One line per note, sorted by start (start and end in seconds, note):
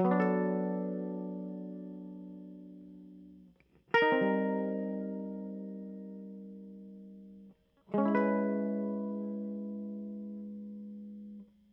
0.00 3.55 F#3
0.06 3.55 B3
0.12 3.52 D4
0.20 2.68 A4
3.95 7.53 A#4
4.03 7.53 D#4
4.13 7.56 C4
4.22 7.56 G3
7.95 11.46 G#3
7.95 11.48 C#4
8.06 11.45 E4
8.15 11.51 B4